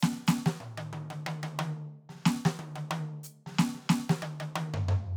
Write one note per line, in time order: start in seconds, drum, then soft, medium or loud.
0.01 snare loud
0.01 hi-hat pedal medium
0.12 snare soft
0.18 snare soft
0.22 snare soft
0.26 snare soft
0.26 hi-hat pedal loud
0.28 snare loud
0.47 snare loud
0.61 mid tom medium
0.78 high tom medium
0.93 high tom loud
1.11 high tom medium
1.27 high tom loud
1.44 high tom loud
1.60 high tom loud
2.10 snare soft
2.15 snare soft
2.20 snare soft
2.24 snare soft
2.26 snare loud
2.46 snare loud
2.60 high tom loud
2.76 high tom medium
2.91 high tom loud
3.24 hi-hat pedal medium
3.47 snare medium
3.52 snare soft
3.55 snare soft
3.59 snare soft
3.59 snare loud
3.75 snare soft
3.79 snare soft
3.82 snare soft
3.84 snare soft
3.90 snare loud
4.10 snare loud
4.23 high tom loud
4.41 high tom medium
4.56 high tom loud
4.74 floor tom loud
4.89 floor tom loud